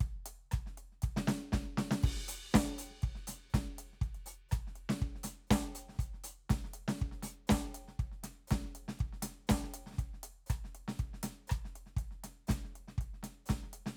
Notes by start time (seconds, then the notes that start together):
0.01 kick, closed hi-hat
0.26 closed hi-hat
0.52 kick, cross-stick, closed hi-hat
0.67 snare
0.78 closed hi-hat
0.92 snare
1.03 kick, closed hi-hat
1.17 snare
1.28 snare
1.53 kick, snare
1.64 snare
1.78 snare
1.91 snare
2.03 kick, crash
2.17 snare
2.29 open hi-hat
2.52 kick, snare, closed hi-hat, hi-hat pedal
2.69 snare
2.79 closed hi-hat
2.91 snare
3.03 kick, closed hi-hat
3.15 snare
3.28 open hi-hat, snare
3.51 snare, hi-hat pedal
3.55 kick, closed hi-hat
3.79 closed hi-hat
3.93 snare
4.02 kick, closed hi-hat
4.15 closed hi-hat
4.26 open hi-hat, snare
4.49 kick, cross-stick, closed hi-hat, hi-hat pedal
4.67 snare
4.76 closed hi-hat
4.90 snare
5.02 kick, closed hi-hat
5.16 snare
5.24 closed hi-hat, snare
5.48 kick, snare, closed hi-hat, hi-hat pedal
5.64 snare
5.76 closed hi-hat
5.89 snare
5.93 snare
5.95 snare
5.99 closed hi-hat, kick
6.14 snare
6.24 closed hi-hat
6.50 kick, snare, closed hi-hat
6.64 snare
6.74 closed hi-hat
6.88 snare
7.00 kick, closed hi-hat
7.12 snare
7.23 open hi-hat, snare
7.48 snare, closed hi-hat, hi-hat pedal
7.52 kick
7.65 snare
7.75 closed hi-hat
7.88 snare
8.00 kick, closed hi-hat
8.12 snare
8.24 snare, open hi-hat
8.48 snare, closed hi-hat, hi-hat pedal
8.52 kick
8.64 snare
8.76 closed hi-hat
8.89 snare
9.00 kick, closed hi-hat
9.13 snare
9.23 snare, open hi-hat
9.48 kick, snare, closed hi-hat, hi-hat pedal
9.64 snare
9.74 closed hi-hat
9.87 snare
9.91 snare
9.93 snare
9.99 kick, closed hi-hat
10.14 snare
10.24 open hi-hat
10.47 kick, cross-stick, closed hi-hat, hi-hat pedal
10.65 snare
10.75 closed hi-hat
10.88 snare
11.00 kick, closed hi-hat
11.14 snare
11.24 snare, open hi-hat
11.48 cross-stick, closed hi-hat, hi-hat pedal
11.52 kick
11.65 snare
11.76 closed hi-hat
11.87 snare
11.97 kick, closed hi-hat
12.11 snare
12.24 snare, open hi-hat
12.48 kick, snare, closed hi-hat, hi-hat pedal
12.64 snare
12.76 closed hi-hat
12.88 snare
12.98 kick, closed hi-hat
13.14 snare
13.23 snare, closed hi-hat
13.46 snare, hi-hat pedal
13.50 kick, closed hi-hat
13.63 snare
13.74 closed hi-hat
13.86 snare